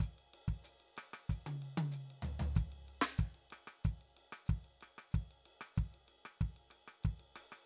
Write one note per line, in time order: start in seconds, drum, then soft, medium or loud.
0.01 kick medium
0.01 hi-hat pedal medium
0.01 ride soft
0.19 ride soft
0.34 ride medium
0.49 kick medium
0.65 hi-hat pedal medium
0.65 ride soft
0.81 ride soft
0.98 cross-stick medium
0.98 ride medium
1.14 cross-stick medium
1.30 kick medium
1.30 hi-hat pedal medium
1.30 ride soft
1.47 high tom medium
1.47 ride soft
1.63 ride medium
1.78 high tom medium
1.92 hi-hat pedal medium
1.92 ride soft
2.11 ride soft
2.23 floor tom medium
2.23 ride medium
2.40 floor tom medium
2.56 kick medium
2.56 hi-hat pedal medium
2.56 ride soft
2.73 ride soft
2.89 ride soft
3.02 snare loud
3.18 kick medium
3.18 hi-hat pedal medium
3.18 ride soft
3.35 ride soft
3.51 cross-stick medium
3.51 ride soft
3.68 cross-stick medium
3.85 kick medium
3.85 hi-hat pedal medium
3.85 ride soft
4.02 ride soft
4.18 ride medium
4.33 cross-stick medium
4.47 kick medium
4.47 hi-hat pedal soft
4.47 ride soft
4.65 ride soft
4.82 cross-stick soft
4.82 ride soft
4.99 cross-stick medium
5.12 kick medium
5.12 hi-hat pedal soft
5.16 ride soft
5.32 ride soft
5.46 ride medium
5.62 cross-stick medium
5.77 kick medium
5.77 hi-hat pedal soft
5.77 ride soft
5.95 ride soft
6.09 cross-stick soft
6.09 ride soft
6.26 cross-stick medium
6.41 kick medium
6.41 hi-hat pedal soft
6.41 ride soft
6.57 ride soft
6.71 cross-stick soft
6.71 ride soft
6.89 cross-stick soft
7.03 kick medium
7.03 hi-hat pedal soft
7.03 ride soft
7.20 ride soft
7.37 cross-stick medium
7.37 ride medium
7.53 cross-stick medium